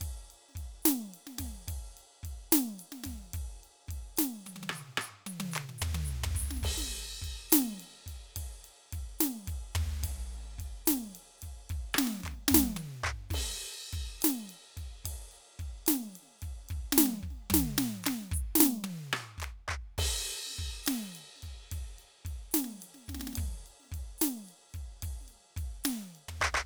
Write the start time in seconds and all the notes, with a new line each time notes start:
0.01 kick, ride
0.30 ride
0.49 snare
0.55 kick, ride
0.82 snare, hi-hat pedal, ride
1.14 ride
1.27 snare
1.39 kick, snare, ride
1.67 kick, hi-hat pedal, ride
1.74 kick
1.97 ride
2.23 kick, ride
2.52 snare, hi-hat pedal, ride
2.79 hi-hat pedal, ride
2.92 snare
3.04 kick, snare, ride
3.34 kick, ride
3.40 kick
3.64 ride
3.87 kick, snare, ride
4.17 snare, hi-hat pedal, ride
4.46 hi-hat pedal, high tom
4.56 high tom
4.63 high tom
4.69 cross-stick
4.75 hi-hat pedal
4.98 cross-stick, hi-hat pedal
5.27 hi-hat pedal, high tom
5.40 open hi-hat, high tom
5.52 percussion, hi-hat pedal
5.69 mid tom
5.78 floor tom, hi-hat pedal
5.95 mid tom
6.05 hi-hat pedal
6.24 floor tom
6.35 kick, hi-hat pedal
6.42 kick
6.51 snare
6.57 snare
6.63 kick, crash
6.70 kick
6.74 kick, snare
7.22 kick, ride
7.50 snare, hi-hat pedal, ride
7.62 snare
7.78 snare, ride
7.88 snare
7.93 snare
7.97 snare
7.99 snare
8.06 kick, ride
8.36 kick, ride
8.64 ride
8.93 kick, ride
8.99 kick
9.19 snare, hi-hat pedal, ride
9.27 snare
9.48 kick, ride
9.54 kick
9.72 kick, floor tom, hi-hat pedal
10.03 kick, ride
10.09 kick
10.33 ride
10.39 snare
10.43 snare
10.46 snare
10.48 snare
10.59 kick, ride
10.86 snare, hi-hat pedal, ride
10.97 snare
11.11 hi-hat pedal, ride
11.38 hi-hat pedal, ride
11.43 kick
11.70 kick, ride
11.77 kick
11.94 cross-stick, hi-hat pedal
11.98 snare
12.07 snare
12.20 kick, snare, percussion
12.28 snare
12.31 snare
12.48 kick, snare
12.55 snare
12.63 snare
12.76 hi-hat pedal, mid tom
12.85 snare
12.94 snare
13.04 kick, percussion
13.09 kick
13.29 kick, snare, hi-hat pedal
13.34 crash
13.38 kick
13.92 kick, snare, ride
13.99 kick
14.21 snare, hi-hat pedal, ride
14.49 ride
14.77 kick, ride
15.05 kick, ride
15.10 kick
15.31 hi-hat pedal, ride
15.59 kick, ride
15.87 snare, hi-hat pedal, ride
15.95 snare
16.12 hi-hat pedal, ride
16.23 snare
16.39 kick, hi-hat pedal, ride
16.64 snare
16.69 kick, ride
16.77 kick
16.93 snare, hi-hat pedal
16.98 snare
17.06 snare
17.23 kick
17.31 snare
17.50 kick, snare, high tom
17.57 kick
17.77 snare, hi-hat pedal
18.03 snare, percussion, hi-hat pedal
18.21 snare
18.32 kick, hi-hat pedal
18.39 kick
18.56 snare
18.60 snare
18.84 high tom
19.13 cross-stick
19.20 cross-stick
19.38 kick, percussion, high tom
19.68 kick, percussion
19.98 kick, crash
20.09 kick
20.47 snare
20.50 snare
20.56 kick, ride
20.64 kick
20.84 hi-hat pedal, ride
20.88 snare
21.11 snare, hi-hat pedal
21.15 ride
21.36 snare
21.43 kick, ride
21.72 kick, ride
21.78 kick
21.98 hi-hat pedal, ride
22.25 kick, ride
22.51 snare, hi-hat pedal, ride
22.64 snare
22.80 hi-hat pedal, ride
22.94 snare
23.06 kick, snare, hi-hat pedal
23.15 snare
23.20 snare
23.27 snare
23.33 snare, ride
23.38 kick
23.44 kick
23.66 ride
23.80 snare
23.85 snare
23.92 kick, ride
23.98 kick
24.18 snare, hi-hat pedal, ride
24.44 hi-hat pedal
24.49 ride
24.69 snare, hi-hat pedal
24.74 kick, ride
25.03 kick, ride
25.09 kick
25.21 snare
25.27 snare, hi-hat pedal, ride
25.57 kick, ride
25.63 kick
25.84 snare, hi-hat pedal, ride
26.15 ride
26.29 floor tom
26.41 kick, percussion
26.54 percussion